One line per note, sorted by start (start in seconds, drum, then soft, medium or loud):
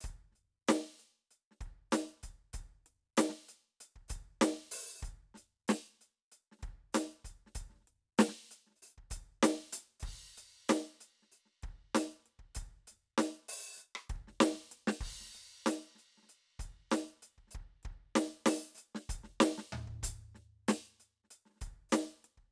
0.01 kick soft
0.01 hi-hat pedal medium
0.05 closed hi-hat soft
0.32 closed hi-hat soft
0.32 snare soft
0.68 open hi-hat medium
0.68 snare loud
0.99 closed hi-hat soft
1.31 closed hi-hat soft
1.51 snare soft
1.61 kick soft
1.61 closed hi-hat soft
1.91 closed hi-hat medium
1.91 snare loud
1.91 hi-hat pedal soft
2.23 closed hi-hat soft
2.23 kick soft
2.53 closed hi-hat medium
2.53 kick soft
2.86 closed hi-hat soft
3.17 closed hi-hat medium
3.17 snare loud
3.29 snare soft
3.49 closed hi-hat soft
3.80 closed hi-hat soft
3.96 kick soft
4.08 closed hi-hat medium
4.08 kick soft
4.08 hi-hat pedal soft
4.41 closed hi-hat medium
4.41 snare loud
4.71 open hi-hat medium
4.99 kick soft
4.99 hi-hat pedal soft
5.04 closed hi-hat soft
5.34 closed hi-hat soft
5.34 snare soft
5.68 open hi-hat medium
5.68 snare loud
5.68 hi-hat pedal soft
6.01 closed hi-hat soft
6.32 closed hi-hat soft
6.52 snare soft
6.59 kick soft
6.59 snare soft
6.59 closed hi-hat soft
6.93 closed hi-hat medium
6.93 snare medium
6.93 hi-hat pedal soft
7.25 closed hi-hat soft
7.25 kick soft
7.46 snare soft
7.55 closed hi-hat medium
7.55 kick soft
7.61 kick soft
7.70 snare soft
7.72 snare soft
7.75 snare soft
7.81 snare soft
7.87 closed hi-hat soft
8.18 open hi-hat medium
8.18 snare loud
8.18 hi-hat pedal soft
8.28 snare soft
8.51 closed hi-hat soft
8.67 snare soft
8.70 snare soft
8.76 hi-hat pedal soft
8.82 open hi-hat soft
8.98 kick soft
9.10 closed hi-hat medium
9.10 kick soft
9.10 hi-hat pedal medium
9.43 closed hi-hat medium
9.43 snare loud
9.73 open hi-hat loud
10.00 kick soft
10.00 hi-hat pedal medium
10.04 crash medium
10.08 kick soft
10.38 closed hi-hat soft
10.69 closed hi-hat medium
10.69 snare loud
11.01 closed hi-hat soft
11.22 snare soft
11.32 open hi-hat soft
11.46 snare soft
11.63 kick soft
11.63 closed hi-hat soft
11.95 open hi-hat medium
11.95 snare loud
11.95 hi-hat pedal soft
12.26 closed hi-hat soft
12.39 kick soft
12.55 closed hi-hat medium
12.55 kick soft
12.66 kick soft
12.87 closed hi-hat soft
12.87 snare soft
13.18 closed hi-hat medium
13.18 snare loud
13.49 open hi-hat loud
13.77 closed hi-hat soft
13.77 hi-hat pedal soft
13.95 cross-stick medium
14.10 kick soft
14.10 closed hi-hat soft
14.16 kick soft
14.28 snare soft
14.40 snare loud
14.54 snare soft
14.72 closed hi-hat medium
14.88 snare medium
15.01 kick soft
15.01 crash medium
15.07 kick soft
15.10 kick soft
15.20 snare soft
15.25 snare soft
15.29 snare soft
15.34 closed hi-hat soft
15.34 snare soft
15.66 open hi-hat medium
15.66 snare medium
15.95 closed hi-hat soft
15.95 snare soft
16.17 snare soft
16.23 snare soft
16.27 closed hi-hat soft
16.27 snare soft
16.59 closed hi-hat soft
16.59 kick soft
16.67 kick soft
16.91 open hi-hat medium
16.91 snare medium
16.91 hi-hat pedal medium
17.22 closed hi-hat soft
17.38 kick soft
17.47 snare soft
17.51 open hi-hat medium
17.51 kick soft
17.51 snare soft
17.51 hi-hat pedal soft
17.83 kick soft
17.83 closed hi-hat soft
18.16 closed hi-hat medium
18.16 snare loud
18.46 open hi-hat loud
18.46 snare loud
18.75 closed hi-hat soft
18.75 hi-hat pedal medium
18.95 snare soft
19.09 closed hi-hat medium
19.09 kick soft
19.15 kick soft
19.18 kick soft
19.24 snare soft
19.40 snare loud
19.58 snare soft
19.73 floor tom medium
19.87 kick soft
20.03 closed hi-hat loud
20.03 kick soft
20.35 snare soft
20.35 closed hi-hat soft
20.68 closed hi-hat medium
20.68 snare loud
21.00 closed hi-hat soft
21.24 snare soft
21.31 closed hi-hat soft
21.46 snare soft
21.50 snare soft
21.53 snare soft
21.56 snare soft
21.61 closed hi-hat soft
21.61 kick soft
21.89 closed hi-hat medium
21.89 snare loud
21.89 hi-hat pedal soft
22.24 closed hi-hat soft
22.38 kick soft